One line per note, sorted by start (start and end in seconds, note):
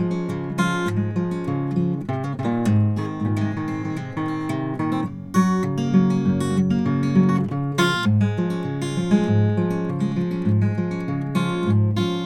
0.00 0.54 F3
0.12 0.55 C#4
0.31 0.79 C#3
0.59 1.13 F3
0.59 0.94 C#4
0.59 0.99 F4
0.88 1.21 G#2
0.98 1.75 G#3
1.18 1.83 F3
1.33 1.73 C#4
1.50 2.05 C#3
1.84 1.98 F3
2.10 2.25 C3
2.25 2.38 C#3
2.40 2.48 C3
2.40 2.93 D#3
2.48 2.67 A#2
2.67 3.21 G#2
2.67 2.82 C3
2.98 3.55 D#3
2.98 3.27 C4
2.98 3.15 G#4
3.21 4.14 G#2
3.27 3.38 A#2
3.38 3.58 C3
3.43 5.05 G#3
3.58 3.96 A#2
3.58 3.85 D#3
3.69 4.27 C4
3.87 4.07 D#3
3.92 4.21 G#4
3.98 4.12 C3
4.12 4.43 A#2
4.18 4.79 D#3
4.28 4.54 C4
4.51 4.77 C3
4.78 5.04 A#2
4.78 5.09 D#3
4.83 5.03 F2
4.93 5.64 C#4
5.03 6.22 F#2
5.03 5.32 C#3
5.08 5.34 A#3
5.35 5.95 F#3
5.35 5.72 F#4
5.65 6.82 C#3
5.79 6.59 A#3
5.95 6.52 F#3
6.12 6.64 C#4
6.27 7.15 F#2
6.42 6.63 F#4
6.59 7.13 F#3
6.72 7.41 A#3
6.87 7.48 C#3
7.04 7.45 C#4
7.17 7.49 F#3
7.30 7.43 F#4
7.40 7.53 F#2
7.53 8.03 F2
7.53 7.97 C#3
7.53 7.71 F3
7.80 8.01 F3
7.80 7.92 C#4
7.80 8.12 F4
8.05 8.45 G#2
8.22 9.03 G#3
8.39 8.70 F3
8.52 9.33 C#4
8.65 9.05 C#3
8.83 9.34 F4
8.99 9.53 F3
9.12 9.93 G#3
9.30 9.70 G#2
9.59 10.13 F3
9.72 9.96 C#4
9.91 10.27 C#3
10.02 10.54 G#3
10.18 10.75 F3
10.32 10.56 C#4
10.47 10.81 G#2
10.63 11.79 G#3
10.79 11.37 F3
10.92 11.26 C#4
11.10 11.55 C#3
11.36 11.94 F3
11.36 11.78 C#4
11.36 11.79 F4
11.69 12.20 G#2
11.98 12.26 F3
11.98 12.25 C#4
11.98 12.26 F4